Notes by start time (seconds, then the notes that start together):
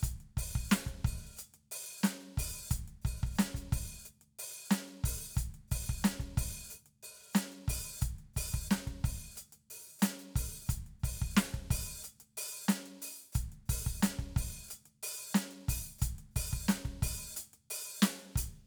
0.01 closed hi-hat, kick, hi-hat pedal
0.21 closed hi-hat
0.38 open hi-hat, kick
0.56 kick
0.69 closed hi-hat, snare, hi-hat pedal
0.87 kick, closed hi-hat
1.05 open hi-hat, kick
1.37 closed hi-hat, hi-hat pedal
1.55 closed hi-hat
1.72 open hi-hat
2.01 closed hi-hat, snare, hi-hat pedal
2.22 closed hi-hat
2.38 open hi-hat, kick
2.70 closed hi-hat, kick, hi-hat pedal
2.88 closed hi-hat
3.02 kick, hi-hat pedal
3.06 open hi-hat
3.24 kick
3.36 closed hi-hat, snare, hi-hat pedal
3.55 closed hi-hat, kick
3.73 open hi-hat, kick
4.06 open hi-hat, hi-hat pedal
4.22 closed hi-hat
4.39 open hi-hat
4.70 closed hi-hat, snare, hi-hat pedal
4.88 closed hi-hat
5.04 open hi-hat, kick
5.35 closed hi-hat, kick, hi-hat pedal
5.55 closed hi-hat
5.68 open hi-hat, kick, hi-hat pedal
5.90 kick
6.02 closed hi-hat, snare, hi-hat pedal
6.20 kick, closed hi-hat
6.38 open hi-hat, kick
6.70 open hi-hat, hi-hat pedal
6.87 closed hi-hat
7.03 open hi-hat
7.34 closed hi-hat, snare, hi-hat pedal
7.53 closed hi-hat
7.68 open hi-hat, kick
7.99 closed hi-hat, kick, hi-hat pedal
8.19 closed hi-hat
8.34 open hi-hat, kick, hi-hat pedal
8.54 kick
8.68 closed hi-hat, snare, hi-hat pedal
8.88 kick, closed hi-hat
9.00 hi-hat pedal
9.05 open hi-hat, kick
9.36 closed hi-hat, hi-hat pedal
9.53 closed hi-hat
9.71 open hi-hat
10.00 closed hi-hat, snare, hi-hat pedal
10.19 closed hi-hat
10.36 open hi-hat, kick
10.67 closed hi-hat, kick, hi-hat pedal
10.87 closed hi-hat
11.00 hi-hat pedal
11.04 open hi-hat, kick
11.22 kick
11.34 closed hi-hat, snare, hi-hat pedal
11.54 kick, closed hi-hat
11.71 open hi-hat, kick
12.03 closed hi-hat, hi-hat pedal
12.21 closed hi-hat
12.38 open hi-hat
12.65 snare, hi-hat pedal
12.69 closed hi-hat
12.86 closed hi-hat
12.99 open hi-hat, hi-hat pedal
13.33 closed hi-hat, kick, hi-hat pedal
13.53 closed hi-hat
13.66 open hi-hat, kick, hi-hat pedal
13.87 kick
14.00 closed hi-hat, snare, hi-hat pedal
14.19 kick, closed hi-hat
14.37 open hi-hat, kick
14.69 closed hi-hat, hi-hat pedal
14.86 closed hi-hat
15.03 open hi-hat
15.33 closed hi-hat, snare, hi-hat pedal
15.52 closed hi-hat
15.68 open hi-hat, kick, hi-hat pedal
15.99 closed hi-hat, kick, hi-hat pedal
16.19 closed hi-hat
16.32 hi-hat pedal
16.37 open hi-hat, kick
16.53 kick
16.66 closed hi-hat, snare, hi-hat pedal
16.86 kick, closed hi-hat
17.03 open hi-hat, kick
17.35 closed hi-hat, hi-hat pedal
17.54 closed hi-hat
17.71 open hi-hat
18.00 closed hi-hat, snare, hi-hat pedal
18.20 closed hi-hat
18.36 open hi-hat, kick